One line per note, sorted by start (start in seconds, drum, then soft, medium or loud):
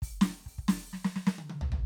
0.02 open hi-hat medium
0.02 kick soft
0.22 open hi-hat medium
0.22 snare loud
0.46 open hi-hat medium
0.46 kick soft
0.59 kick soft
0.69 open hi-hat loud
0.69 snare loud
0.93 snare medium
1.05 snare loud
1.16 snare medium
1.27 snare loud
1.39 high tom loud
1.50 high tom loud
1.62 floor tom loud
1.72 floor tom loud